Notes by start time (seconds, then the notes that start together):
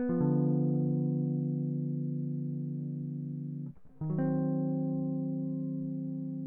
0.00 B3
0.10 F3
0.22 D3
4.02 D#3
4.10 F#3
4.19 C4